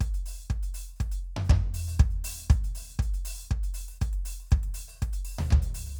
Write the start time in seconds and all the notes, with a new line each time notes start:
0.01 closed hi-hat, kick
0.14 closed hi-hat
0.26 open hi-hat
0.41 open hi-hat
0.45 hi-hat pedal
0.50 kick, closed hi-hat
0.63 closed hi-hat
0.75 open hi-hat
0.89 open hi-hat
0.96 hi-hat pedal
1.01 kick, closed hi-hat
1.12 closed hi-hat
1.25 open hi-hat
1.37 mid tom
1.45 hi-hat pedal
1.50 kick, mid tom
1.74 open hi-hat
1.88 open hi-hat
1.95 hi-hat pedal
2.00 kick, closed hi-hat
2.11 closed hi-hat
2.25 open hi-hat
2.39 open hi-hat
2.45 hi-hat pedal
2.50 closed hi-hat, kick
2.64 closed hi-hat
2.76 open hi-hat
2.89 open hi-hat
2.94 hi-hat pedal
2.99 closed hi-hat, kick
3.14 closed hi-hat
3.26 open hi-hat
3.40 open hi-hat
3.47 hi-hat pedal
3.51 kick, closed hi-hat
3.64 closed hi-hat
3.74 open hi-hat
3.89 open hi-hat
3.96 hi-hat pedal
4.02 closed hi-hat, kick
4.13 closed hi-hat
4.26 open hi-hat
4.41 open hi-hat
4.47 hi-hat pedal
4.51 kick, closed hi-hat
4.64 closed hi-hat
4.75 open hi-hat
4.88 open hi-hat
4.97 hi-hat pedal
5.03 kick, closed hi-hat
5.14 closed hi-hat
5.25 open hi-hat
5.39 floor tom
5.49 kick, floor tom, hi-hat pedal
5.63 closed hi-hat
5.75 open hi-hat
5.86 open hi-hat
5.97 hi-hat pedal